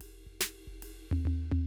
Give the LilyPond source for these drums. \new DrumStaff \drummode { \time 4/4 \tempo 4 = 144 \tuplet 3/2 { <bd cymr>8 r8 bd8 <sn cymr>8 r8 bd8 cymr8 r8 <tomfh tommh>8 <tomfh tommh>8 r8 <tommh tomfh>8 } | }